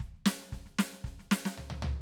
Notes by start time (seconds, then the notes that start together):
0.00 kick, snare
0.14 snare
0.26 snare
0.41 snare
0.52 kick, snare
0.65 snare
0.79 snare
0.93 snare
1.04 kick, snare
1.19 snare
1.31 snare
1.45 snare
1.58 floor tom
1.70 floor tom
1.82 floor tom